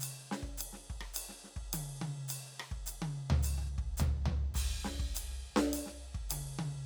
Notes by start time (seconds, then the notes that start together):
0.01 hi-hat pedal, ride
0.32 snare
0.43 kick
0.58 hi-hat pedal, ride
0.73 snare
0.90 kick
1.01 cross-stick
1.14 hi-hat pedal, ride
1.29 snare
1.45 snare
1.57 kick
1.73 hi-hat pedal, high tom, ride
2.02 high tom
2.29 hi-hat pedal, ride
2.60 cross-stick
2.72 kick
2.87 hi-hat pedal, ride
3.02 high tom
3.31 floor tom
3.43 hi-hat pedal, ride
3.58 high tom
3.79 kick
3.98 floor tom, hi-hat pedal
4.26 floor tom
4.55 kick, hi-hat pedal, crash
4.85 snare
5.00 kick
5.15 hi-hat pedal, ride
5.30 snare
5.57 snare
5.74 hi-hat pedal, ride
5.87 snare
6.15 kick
6.30 hi-hat pedal, high tom, ride
6.59 high tom